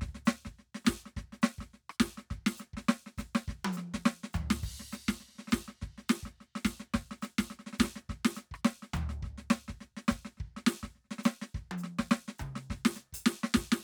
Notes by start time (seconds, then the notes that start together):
0.01 kick, snare
0.08 kick
0.14 snare
0.25 snare, hi-hat pedal
0.45 kick, snare
0.59 snare
0.74 snare
0.85 kick, snare, hi-hat pedal
0.94 kick
1.05 snare
1.16 kick, snare
1.22 kick
1.32 snare
1.42 snare, hi-hat pedal
1.58 kick, snare
1.73 snare
1.89 cross-stick
2.00 kick, snare, hi-hat pedal
2.05 kick
2.17 snare
2.30 kick, snare
2.37 kick
2.41 kick
2.46 snare
2.56 snare, hi-hat pedal
2.73 kick, snare
2.88 snare
3.06 snare
3.17 kick, snare, hi-hat pedal
3.23 kick
3.35 snare
3.47 kick, snare
3.54 kick
3.59 kick
3.64 high tom
3.72 hi-hat pedal
3.77 snare
3.94 kick, snare
4.05 snare
4.23 snare
4.33 kick, floor tom, hi-hat pedal
4.42 kick
4.50 snare
4.63 kick, crash
4.74 kick
4.77 kick, snare
4.91 snare, hi-hat pedal
5.08 kick, snare
5.20 snare
5.28 snare
5.35 snare
5.38 snare
5.47 snare, hi-hat pedal
5.52 kick, snare
5.68 snare
5.81 kick, snare
5.88 kick
5.98 snare
6.09 snare, hi-hat pedal
6.23 kick, snare
6.40 snare
6.55 snare
6.65 kick, snare, hi-hat pedal
6.79 snare
6.94 kick, snare
7.01 kick
7.11 snare
7.22 snare, hi-hat pedal
7.38 kick, snare
7.50 snare
7.59 snare
7.66 snare
7.73 snare
7.79 kick, snare, hi-hat pedal
7.83 snare
7.96 snare
8.09 kick, snare
8.15 kick
8.25 snare
8.35 snare, hi-hat pedal
8.51 kick, cross-stick
8.65 snare
8.82 snare
8.93 kick, floor tom, hi-hat pedal
8.99 kick
9.02 kick
9.09 snare
9.22 kick, snare
9.29 kick
9.37 snare
9.50 snare, hi-hat pedal
9.68 kick, snare
9.80 snare
9.97 snare
10.08 kick, snare, hi-hat pedal
10.25 snare
10.37 kick, snare
10.46 kick
10.56 snare
10.66 snare, hi-hat pedal
10.83 kick, snare
10.95 snare
11.04 snare
11.11 snare
11.18 snare
11.23 snare, hi-hat pedal
11.41 snare
11.54 kick, snare
11.60 kick
11.71 high tom
11.78 hi-hat pedal
11.83 snare
11.99 kick, snare
12.11 snare
12.28 snare
12.38 kick, hi-hat pedal, mid tom
12.46 kick
12.55 snare
12.70 kick, snare
12.76 kick
12.85 snare
12.94 snare, hi-hat pedal
13.12 open hi-hat, kick
13.26 snare
13.43 snare
13.54 kick, snare, hi-hat pedal
13.62 kick
13.65 kick
13.72 snare